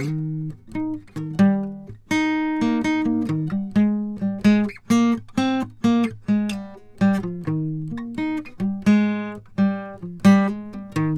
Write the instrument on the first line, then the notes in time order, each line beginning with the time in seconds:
acoustic guitar
0.00 D#3
1.18 D#3
1.40 G3
2.12 D#4
2.63 A#3
2.81 A#3
2.86 D#4
3.07 A#3
3.31 D#3
3.54 G3
3.77 G#3
4.18 G3
4.46 G#3
4.92 A#3
5.39 C4
5.86 A#3
6.30 G#3
6.51 G3
6.76 G#4
7.03 G3
7.25 F3
7.49 D#3
8.61 G3
8.88 G#3
9.60 G3
10.04 F3
10.26 G3
10.49 G#3
10.75 G3
10.97 D#3